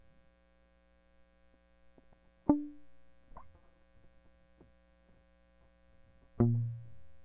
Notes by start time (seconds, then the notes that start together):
2.50 D4
6.42 A#2